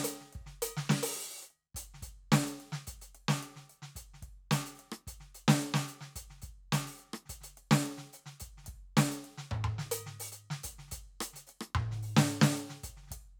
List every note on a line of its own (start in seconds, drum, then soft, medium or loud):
0.01 closed hi-hat loud
0.01 hi-hat pedal soft
0.21 snare soft
0.33 kick soft
0.33 closed hi-hat soft
0.41 kick soft
0.46 snare soft
0.62 closed hi-hat loud
0.77 snare medium
0.89 snare loud
1.03 open hi-hat loud
1.42 hi-hat pedal soft
1.50 closed hi-hat soft
1.75 closed hi-hat medium
1.75 kick soft
1.80 kick soft
1.83 kick soft
1.94 snare soft
1.97 snare soft
2.02 closed hi-hat medium
2.02 kick soft
2.02 snare soft
2.09 kick soft
2.12 kick soft
2.23 kick soft
2.32 closed hi-hat medium
2.32 snare loud
2.43 closed hi-hat medium
2.43 snare soft
2.60 closed hi-hat soft
2.72 snare medium
2.87 closed hi-hat medium
2.87 kick soft
2.93 kick soft
3.02 closed hi-hat medium
3.15 closed hi-hat soft
3.28 snare loud
3.43 closed hi-hat soft
3.56 snare soft
3.70 open hi-hat soft
3.82 snare soft
3.96 closed hi-hat medium
3.96 kick soft
4.14 snare soft
4.22 kick soft
4.22 snare soft
4.22 closed hi-hat soft
4.51 closed hi-hat loud
4.51 snare loud
4.61 snare soft
4.66 open hi-hat medium
4.75 hi-hat pedal soft
4.79 closed hi-hat soft
4.92 cross-stick medium
5.07 closed hi-hat medium
5.07 kick soft
5.13 kick soft
5.20 snare soft
5.26 snare soft
5.35 closed hi-hat soft
5.48 snare loud
5.62 closed hi-hat soft
5.74 snare medium
5.78 snare medium
5.88 closed hi-hat medium
6.01 snare soft
6.16 closed hi-hat medium
6.16 kick soft
6.21 kick soft
6.30 snare soft
6.38 closed hi-hat medium
6.38 snare soft
6.43 kick soft
6.52 kick soft
6.72 closed hi-hat medium
6.72 snare medium
6.85 open hi-hat medium
6.85 snare soft
6.98 closed hi-hat soft
6.98 hi-hat pedal soft
7.13 cross-stick medium
7.26 closed hi-hat medium
7.26 kick soft
7.26 snare soft
7.35 kick soft
7.41 closed hi-hat medium
7.41 snare soft
7.45 snare soft
7.50 snare soft
7.57 closed hi-hat soft
7.71 snare loud
7.86 closed hi-hat soft
7.98 snare soft
8.13 open hi-hat medium
8.13 hi-hat pedal medium
8.26 snare soft
8.40 closed hi-hat medium
8.40 kick soft
8.47 kick soft
8.58 snare soft
8.64 snare soft
8.64 closed hi-hat medium
8.68 kick soft
8.77 kick soft
8.97 closed hi-hat loud
8.97 snare loud
9.08 closed hi-hat medium
9.08 snare soft
9.24 closed hi-hat soft
9.38 snare medium
9.51 kick soft
9.51 high tom medium
9.64 high tom loud
9.78 snare medium
9.91 closed hi-hat loud
10.06 snare soft
10.20 open hi-hat loud
10.32 closed hi-hat medium
10.50 snare medium
10.64 closed hi-hat medium
10.64 kick soft
10.70 kick soft
10.79 snare soft
10.88 closed hi-hat medium
10.88 snare soft
10.92 kick soft
11.01 kick soft
11.21 closed hi-hat loud
11.21 cross-stick medium
11.33 open hi-hat medium
11.33 snare soft
11.47 closed hi-hat soft
11.47 hi-hat pedal soft
11.61 cross-stick medium
11.75 kick soft
11.75 high tom loud
11.81 kick soft
11.91 snare soft
12.03 open hi-hat soft
12.17 snare loud
12.30 closed hi-hat soft
12.42 snare loud
12.56 closed hi-hat medium
12.70 snare soft
12.84 closed hi-hat medium
12.84 kick soft
12.90 kick soft
12.92 kick soft
12.97 snare soft
13.03 snare soft
13.07 kick soft
13.07 snare soft
13.12 closed hi-hat medium
13.20 kick soft